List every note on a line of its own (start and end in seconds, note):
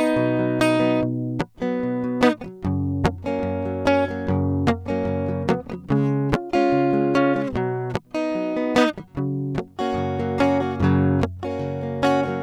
0.00 0.81 B3
0.16 1.03 B2
0.16 0.39 F#3
0.41 0.82 F#3
0.62 1.07 D#4
0.82 1.38 F#3
0.82 1.05 B3
1.04 1.49 B2
1.18 1.40 B3
1.63 2.30 F#3
1.63 2.38 B3
1.85 2.05 B2
2.06 2.32 B2
2.23 2.38 D#4
2.46 2.72 F#3
2.64 3.42 F#2
2.64 3.10 C#3
3.27 3.63 F#3
3.27 4.09 A#3
3.27 3.88 C#4
3.45 4.28 F#2
3.67 4.10 F#3
3.88 4.05 C#4
4.06 4.80 C#4
4.11 4.30 F#3
4.11 4.81 A#3
4.28 5.04 F#2
4.28 4.75 C#3
4.88 5.28 F#3
4.88 5.58 A#3
4.88 5.47 C#4
5.05 5.50 F#2
5.09 5.29 C#3
5.30 5.63 C#3
5.30 5.37 F#3
5.90 6.40 C#3
5.90 6.32 G#3
6.37 6.50 F4
6.55 6.90 G#3
6.55 7.16 C#4
6.55 7.16 F4
6.72 7.50 C#3
6.93 7.37 G#3
7.16 7.32 C#4
7.16 7.50 F4
7.33 7.49 C#4
7.38 7.51 G#3
7.49 7.95 B3
7.57 8.03 B2
7.57 7.93 F#3
8.16 8.56 B3
8.16 8.78 D#4
8.34 8.87 F#3
8.58 8.77 B3
8.77 8.92 B3
8.77 8.96 D#4
9.17 9.67 C#3
9.17 9.55 F#3
9.57 9.68 F#3
9.80 10.19 A#3
9.80 10.40 C#4
9.80 10.42 F#4
9.94 10.81 F#2
9.99 10.82 C#3
10.21 10.83 F#3
10.21 10.39 A#3
10.40 10.60 A#3
10.40 10.62 C#4
10.40 10.60 F#4
10.62 10.87 A#3
10.62 11.22 C#4
10.62 10.80 F#4
10.81 12.43 F#2
10.81 11.29 C#3
10.86 11.29 F#3
10.86 11.32 A#3
11.44 11.83 A#3
11.44 12.04 C#4
11.44 12.04 F#4
11.59 12.43 C#3
11.63 11.76 F#3
11.83 12.25 A#3
12.04 12.25 C#4
12.04 12.22 F#4
12.22 12.43 A#3
12.22 12.43 C#4
12.22 12.43 F#4
12.30 12.43 F#3